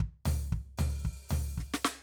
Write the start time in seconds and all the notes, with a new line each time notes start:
0.00 kick
0.25 open hi-hat, floor tom
0.52 kick
0.78 open hi-hat, floor tom
1.05 kick
1.29 open hi-hat, floor tom
1.57 kick, snare
1.74 snare
1.80 hi-hat pedal
1.85 snare